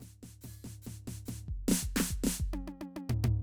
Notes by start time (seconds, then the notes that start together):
0.00 snare, floor tom, hi-hat pedal
0.23 snare, floor tom
0.41 snare, floor tom, hi-hat pedal
0.64 snare, floor tom
0.82 hi-hat pedal
0.86 snare, floor tom
1.07 snare, floor tom
1.25 snare, floor tom, hi-hat pedal
1.48 kick
1.68 snare
1.71 snare
1.83 kick
1.96 snare
2.00 snare
2.10 kick
2.24 snare
2.27 snare
2.40 kick
2.53 high tom
2.67 high tom
2.81 high tom
2.96 high tom
3.09 floor tom
3.24 floor tom